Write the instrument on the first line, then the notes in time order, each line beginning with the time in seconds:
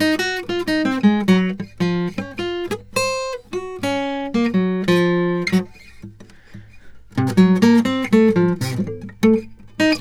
acoustic guitar
0.02 D#4
0.21 F#4
0.51 F4
0.69 D#4
0.87 C4
1.05 G#3
1.29 F#3
1.81 F3
2.19 C#4
2.40 F4
2.98 C5
3.54 F#4
3.85 C#4
4.36 A#3
4.55 F#3
4.89 F3
5.54 F#3
7.19 C3
7.30 C3
7.39 F#3
7.63 A#3
7.87 C4
8.14 A3
8.37 F3
8.63 C3
8.73 B2
8.79 F3
9.24 A3
9.81 D#4